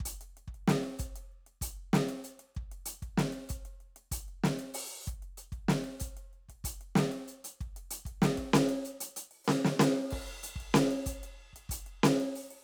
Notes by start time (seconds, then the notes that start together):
0.04 closed hi-hat, kick
0.21 closed hi-hat
0.37 closed hi-hat
0.48 kick
0.54 closed hi-hat
0.68 snare
0.83 closed hi-hat
0.99 closed hi-hat, kick
1.16 closed hi-hat
1.32 closed hi-hat
1.46 closed hi-hat
1.61 closed hi-hat, kick
1.77 closed hi-hat
1.93 snare
2.09 closed hi-hat
2.24 closed hi-hat
2.39 closed hi-hat
2.55 kick, closed hi-hat
2.72 closed hi-hat
2.86 closed hi-hat
3.02 kick, closed hi-hat
3.18 snare
3.32 closed hi-hat
3.49 closed hi-hat, kick
3.65 closed hi-hat
3.80 closed hi-hat
3.96 closed hi-hat
4.11 closed hi-hat, kick
4.28 closed hi-hat
4.44 snare
4.59 closed hi-hat
4.74 open hi-hat
5.06 open hi-hat, kick, hi-hat pedal
5.22 closed hi-hat
5.37 closed hi-hat
5.52 kick, closed hi-hat
5.68 snare
5.84 closed hi-hat
6.00 closed hi-hat, kick
6.17 closed hi-hat
6.33 closed hi-hat
6.49 kick, closed hi-hat
6.64 closed hi-hat, kick
6.81 closed hi-hat
6.95 snare
7.00 snare
7.12 closed hi-hat
7.28 closed hi-hat
7.44 closed hi-hat
7.61 kick, closed hi-hat
7.76 closed hi-hat
7.91 closed hi-hat
8.05 kick, closed hi-hat
8.22 snare
8.37 kick, closed hi-hat
8.53 snare
8.69 closed hi-hat
8.85 closed hi-hat
9.00 closed hi-hat
9.16 closed hi-hat
9.31 open hi-hat
9.44 snare, hi-hat pedal
9.65 snare
9.79 snare
10.11 kick, crash
10.28 closed hi-hat
10.43 closed hi-hat
10.56 kick
10.60 kick, closed hi-hat
10.74 snare
10.91 closed hi-hat
11.06 closed hi-hat, kick
11.23 closed hi-hat
11.40 closed hi-hat
11.53 kick, closed hi-hat
11.69 closed hi-hat, kick
11.86 closed hi-hat
12.03 snare
12.20 closed hi-hat
12.35 open hi-hat
12.51 open hi-hat